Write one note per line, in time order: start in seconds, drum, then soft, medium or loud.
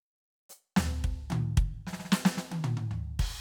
0.50 hi-hat pedal loud
0.76 snare loud
0.76 floor tom loud
1.04 kick medium
1.30 mid tom loud
1.30 high tom loud
1.57 kick loud
1.57 snare soft
1.87 snare medium
1.93 snare medium
1.99 snare medium
2.05 snare medium
2.10 snare soft
2.12 snare loud
2.25 snare loud
2.37 snare medium
2.52 high tom loud
2.64 mid tom loud
2.77 mid tom loud
2.91 floor tom medium
3.19 kick medium
3.19 crash loud